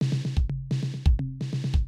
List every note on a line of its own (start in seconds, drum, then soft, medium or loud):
0.01 snare loud
0.12 snare loud
0.25 snare medium
0.37 kick medium
0.50 floor tom loud
0.71 snare loud
0.83 snare medium
0.94 snare medium
1.06 kick loud
1.19 floor tom loud
1.19 high tom loud
1.41 snare medium
1.53 snare loud
1.64 snare loud
1.74 kick medium